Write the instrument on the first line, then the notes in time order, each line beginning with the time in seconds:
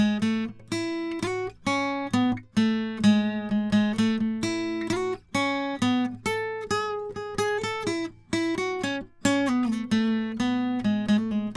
acoustic guitar
0.01 G#3
0.23 A3
0.45 A3
0.72 E4
1.24 F#4
1.67 C#4
2.14 B3
2.57 A3
3.04 G#3
3.52 G#3
3.73 G#3
4.00 A3
4.22 A3
4.44 E4
4.91 F#4
5.35 C#4
5.83 B3
6.27 A4
6.71 G#4
7.17 G#4
7.39 G#4
7.65 A4
7.88 E4
8.34 E4
8.59 F#4
8.84 C#4
9.26 C#4
9.48 B3
9.66 A3
9.92 A3
10.41 B3
10.86 G#3
11.10 G#3
11.19 A3
11.32 G#3